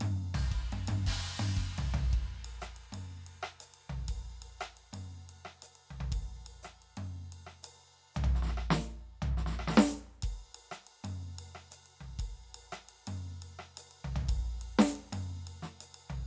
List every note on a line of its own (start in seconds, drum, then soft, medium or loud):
0.01 mid tom loud
0.01 ride loud
0.35 floor tom loud
0.35 ride medium
0.52 kick medium
0.73 mid tom loud
0.73 ride medium
0.88 mid tom loud
0.88 ride loud
1.07 kick medium
1.07 ride loud
1.40 mid tom loud
1.40 ride soft
1.57 kick medium
1.78 floor tom loud
1.78 ride medium
1.94 floor tom loud
2.13 kick medium
2.13 ride medium
2.45 ride loud
2.62 cross-stick medium
2.62 hi-hat pedal medium
2.77 ride medium
2.93 mid tom medium
2.93 ride loud
3.27 ride medium
3.43 cross-stick medium
3.61 hi-hat pedal medium
3.61 ride loud
3.74 ride medium
3.90 floor tom medium
4.09 kick medium
4.09 ride loud
4.26 ride soft
4.42 ride medium
4.59 cross-stick medium
4.59 hi-hat pedal medium
4.59 ride soft
4.77 ride medium
4.93 mid tom medium
4.93 ride loud
5.30 ride medium
5.45 cross-stick medium
5.63 hi-hat pedal medium
5.63 ride medium
5.76 ride medium
5.91 kick soft
5.91 floor tom medium
6.01 floor tom medium
6.12 kick medium
6.12 ride loud
6.47 ride loud
6.63 cross-stick medium
6.63 hi-hat pedal medium
6.82 ride medium
6.97 mid tom medium
6.97 ride medium
7.33 ride medium
7.47 cross-stick medium
7.63 hi-hat pedal medium
7.63 ride loud
7.82 ride soft
7.93 ride soft
8.15 floor tom loud
8.15 hi-hat pedal soft
8.24 floor tom loud
8.35 snare soft
8.43 snare medium
8.46 snare medium
8.48 cross-stick medium
8.48 snare soft
8.58 cross-stick medium
8.61 cross-stick soft
8.71 snare loud
8.71 hi-hat pedal medium
9.22 floor tom loud
9.38 snare medium
9.47 snare medium
9.50 snare medium
9.53 snare soft
9.59 cross-stick medium
9.62 cross-stick soft
9.68 snare medium
9.72 cross-stick medium
9.72 hi-hat pedal medium
9.74 cross-stick medium
9.74 snare loud
10.23 kick medium
10.23 ride loud
10.55 ride loud
10.72 cross-stick medium
10.72 hi-hat pedal medium
10.87 ride medium
11.04 mid tom loud
11.04 ride loud
11.39 ride loud
11.55 cross-stick medium
11.71 hi-hat pedal medium
11.71 ride medium
11.86 ride medium
12.01 floor tom medium
12.19 kick medium
12.19 ride loud
12.55 ride loud
12.72 cross-stick medium
12.72 hi-hat pedal medium
12.89 ride medium
13.07 mid tom loud
13.07 ride loud
13.42 ride medium
13.59 cross-stick medium
13.78 hi-hat pedal medium
13.78 ride loud
13.91 ride medium
14.05 floor tom loud
14.16 floor tom loud
14.29 kick medium
14.29 ride loud
14.62 ride medium
14.79 snare loud
14.79 hi-hat pedal medium
14.96 ride medium
15.13 mid tom loud
15.13 ride loud
15.47 ride loud
15.63 snare medium
15.81 hi-hat pedal medium
15.81 ride loud
15.95 ride medium
16.10 floor tom medium